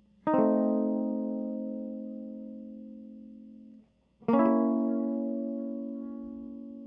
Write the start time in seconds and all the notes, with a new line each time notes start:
0.27 D#4
0.34 C4
0.39 A3
4.29 A#3
4.34 C#4
4.39 E4
4.46 G4